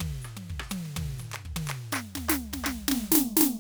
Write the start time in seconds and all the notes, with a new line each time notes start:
0.01 kick, mid tom
0.09 kick
0.22 cross-stick, hi-hat pedal
0.37 high tom
0.50 kick, high tom
0.57 kick, cross-stick
0.70 hi-hat pedal, high tom
0.86 high tom
0.97 kick, mid tom
1.05 kick
1.19 hi-hat pedal, mid tom
1.32 percussion
1.46 kick, mid tom
1.52 kick
1.57 mid tom
1.67 percussion, hi-hat pedal
1.93 snare, percussion, hi-hat pedal
2.16 snare, floor tom
2.29 percussion, snare
2.54 snare, floor tom
2.64 snare, percussion
2.89 snare
2.92 snare
3.12 snare
3.16 snare
3.37 snare
3.41 snare